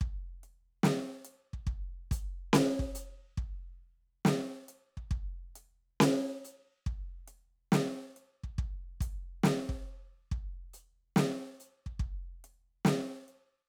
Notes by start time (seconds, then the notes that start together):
0.01 kick, crash, ride
0.43 closed hi-hat
0.84 snare
1.25 closed hi-hat
1.53 kick
1.67 kick, crash
2.11 closed hi-hat, kick
2.53 snare
2.79 kick
2.95 closed hi-hat
3.38 kick, crash
4.25 snare
4.69 closed hi-hat
4.97 kick
5.11 kick
5.56 closed hi-hat
6.00 snare
6.45 closed hi-hat
6.86 kick, crash
7.28 closed hi-hat
7.72 snare
8.16 closed hi-hat
8.44 kick
8.58 kick
9.01 kick, snare, closed hi-hat
9.44 snare
9.69 kick
10.32 kick
10.74 closed hi-hat
11.16 snare
11.60 closed hi-hat
11.86 kick
12.00 kick
12.44 closed hi-hat
12.85 snare
13.28 closed hi-hat